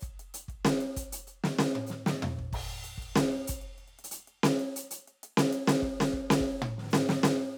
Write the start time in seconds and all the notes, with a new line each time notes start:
0.01 closed hi-hat, kick, hi-hat pedal
0.20 closed hi-hat
0.34 closed hi-hat
0.49 kick, closed hi-hat
0.65 snare
0.81 closed hi-hat
0.97 closed hi-hat, kick
1.13 closed hi-hat
1.28 closed hi-hat
1.44 snare
1.59 snare
1.76 high tom
1.87 snare, hi-hat pedal
2.07 snare
2.23 mid tom
2.39 kick
2.53 kick, crash
2.69 closed hi-hat
2.84 closed hi-hat
2.98 kick
3.03 closed hi-hat
3.16 snare
3.32 closed hi-hat
3.48 closed hi-hat, kick
3.62 closed hi-hat
3.78 closed hi-hat
3.88 closed hi-hat
3.99 closed hi-hat
4.04 closed hi-hat
4.12 closed hi-hat
4.28 closed hi-hat
4.44 snare
4.60 closed hi-hat
4.76 closed hi-hat
4.91 closed hi-hat
5.08 closed hi-hat
5.24 closed hi-hat
5.38 snare
5.53 closed hi-hat
5.68 snare
5.83 kick
6.01 snare
6.14 kick
6.31 snare
6.41 kick
6.50 hi-hat pedal
6.62 closed hi-hat, high tom
6.78 snare
6.83 snare
6.87 snare
6.91 snare, hi-hat pedal
7.09 snare
7.24 snare